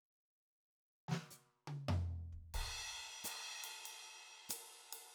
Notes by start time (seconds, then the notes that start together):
1.08 snare
1.11 snare
1.30 hi-hat pedal
1.67 high tom
1.88 floor tom
2.32 kick
2.54 kick, crash, ride
3.24 hi-hat pedal, ride
3.64 ride
3.85 ride
4.49 hi-hat pedal, ride
4.92 ride